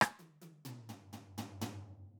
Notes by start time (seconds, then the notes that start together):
0.01 cross-stick
0.23 high tom
0.46 high tom
0.69 mid tom
0.93 floor tom
1.17 floor tom
1.42 floor tom
1.66 floor tom